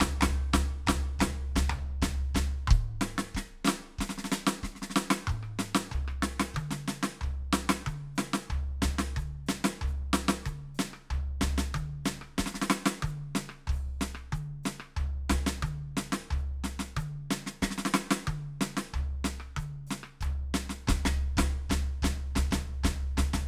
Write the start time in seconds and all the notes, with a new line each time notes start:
0.05 kick, snare, floor tom
0.21 snare, floor tom
0.25 kick
0.53 kick, snare, floor tom
0.87 kick, snare, floor tom
1.19 kick, snare, floor tom
1.56 kick, snare, floor tom
1.69 cross-stick, floor tom
2.02 kick, snare, floor tom
2.34 kick, snare, floor tom
2.66 kick, mid tom
2.71 kick
3.01 snare
3.18 snare
3.35 kick, snare
3.65 snare
3.67 snare
3.98 kick, snare
4.05 hi-hat pedal
4.09 snare
4.18 snare
4.24 snare
4.32 snare
4.47 snare
4.63 kick, snare
4.75 snare
4.82 snare
4.90 snare
4.96 snare
5.10 snare
5.27 kick, mid tom
5.43 cross-stick
5.59 snare
5.75 snare
5.91 kick, floor tom
6.08 cross-stick
6.22 snare
6.40 snare
6.54 kick, high tom
6.71 snare
6.88 snare
7.03 snare
7.21 kick, floor tom
7.53 snare, hi-hat pedal
7.69 snare
7.86 kick, hi-hat pedal, high tom
8.15 snare, hi-hat pedal
8.33 snare
8.50 kick, floor tom
8.82 kick, snare, floor tom
8.98 snare
9.16 kick, hi-hat pedal, high tom
9.46 snare, hi-hat pedal
9.64 snare
9.81 kick, floor tom
9.87 hi-hat pedal
10.13 snare, hi-hat pedal
10.28 snare
10.45 kick, hi-hat pedal, high tom
10.74 hi-hat pedal
10.79 snare
10.93 cross-stick
11.10 kick, floor tom
11.41 kick, snare, floor tom
11.58 snare
11.74 kick, hi-hat pedal, high tom
12.05 snare, hi-hat pedal
12.21 cross-stick
12.38 kick, snare
12.44 snare, hi-hat pedal
12.54 snare
12.62 snare
12.70 snare
12.77 hi-hat pedal
12.86 snare
13.02 kick, high tom
13.07 hi-hat pedal
13.35 snare
13.49 cross-stick
13.67 kick, floor tom
13.72 hi-hat pedal
14.01 snare
14.15 cross-stick
14.32 kick, hi-hat pedal, high tom
14.63 snare, hi-hat pedal
14.80 cross-stick
14.96 kick, floor tom
15.29 kick, snare, floor tom
15.46 snare
15.62 kick, hi-hat pedal, high tom
15.97 snare
16.12 snare
16.30 kick, floor tom
16.37 hi-hat pedal
16.64 snare
16.79 snare
16.96 kick, hi-hat pedal, high tom
17.30 snare
17.46 snare
17.62 kick, snare
17.70 snare
17.78 snare
17.85 snare
17.94 snare, hi-hat pedal
18.11 snare
18.27 kick, high tom
18.61 snare
18.77 snare
18.93 kick, floor tom
19.24 snare
19.40 cross-stick
19.56 kick, hi-hat pedal, high tom
19.87 snare, hi-hat pedal
20.03 cross-stick
20.21 kick, floor tom, hi-hat pedal
20.54 snare
20.69 snare
20.87 kick, snare, floor tom
21.05 kick, snare, floor tom
21.37 kick, snare, floor tom
21.69 kick, snare, floor tom
22.02 kick, snare, floor tom
22.35 kick, snare, floor tom
22.51 kick, snare, floor tom
22.84 kick, snare, floor tom
23.17 kick, snare, floor tom
23.33 kick, snare, floor tom